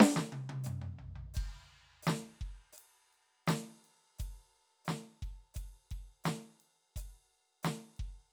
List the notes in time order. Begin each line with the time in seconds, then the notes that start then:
0.01 snare
0.17 snare
0.33 high tom
0.50 high tom
0.65 hi-hat pedal, mid tom
0.82 mid tom
0.99 floor tom
1.16 floor tom
1.35 kick, hi-hat pedal, ride
2.03 hi-hat pedal
2.08 snare, ride
2.42 kick, ride
2.73 hi-hat pedal
2.79 ride
3.14 ride
3.48 snare, hi-hat pedal, ride
3.85 ride
4.19 kick, hi-hat pedal, ride
4.54 ride
4.86 snare, hi-hat pedal
4.90 ride
5.23 kick, ride
5.55 kick, hi-hat pedal, ride
5.92 kick, ride
6.25 snare, hi-hat pedal, ride
6.61 ride
6.97 kick, hi-hat pedal, ride
7.64 snare, hi-hat pedal, ride
7.97 kick, ride